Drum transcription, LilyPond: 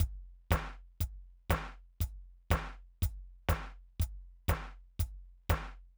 \new DrumStaff \drummode { \time 4/4 \tempo 4 = 120 <bd hho>4 <bd sn hh>4 <bd hh>4 <bd hh sn>4 | <bd hh>4 <bd hh sn>4 <bd hh>4 <bd sn hh>4 | <bd hh>4 <bd hh sn>4 <bd hh>4 <bd hh sn>4 | }